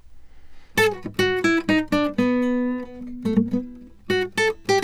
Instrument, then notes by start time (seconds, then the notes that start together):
acoustic guitar
0.78 A4
0.88 G#4
0.96 F#4
1.20 F#4
1.45 E4
1.69 D#4
1.93 D4
2.19 B3
3.26 A3
3.38 A#3
3.53 B3
4.11 F#4
4.38 A4
4.70 G4